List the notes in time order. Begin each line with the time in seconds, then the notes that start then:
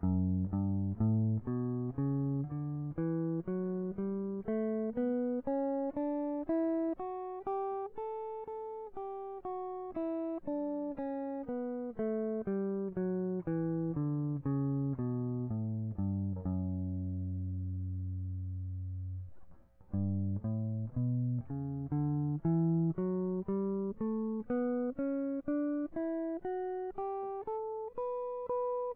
0.06 F#2
0.55 G2
1.03 A2
1.49 B2
2.00 C#3
2.51 D3
2.99 E3
3.49 F#3
4.00 G3
4.49 A3
4.98 B3
5.48 C#4
5.98 D4
6.50 E4
7.01 F#4
7.47 G4
7.99 A4
8.49 A4
8.98 G4
9.46 F#4
9.97 E4
10.48 D4
11.00 C#4
11.51 B3
12.00 A3
12.49 G3
12.98 F#3
13.49 E3
13.98 D3
14.47 C#3
15.01 B2
15.54 A2
16.02 G2
16.48 F#2
19.97 G2
20.47 A2
21.00 B2
21.49 C#3
21.93 D3
22.46 E3
22.99 F#3
23.50 G3
24.02 A3
24.51 B3
25.00 C#4
25.49 D4
25.97 E4
26.46 F#4
26.99 G4
27.48 A4
27.99 B4
28.50 B4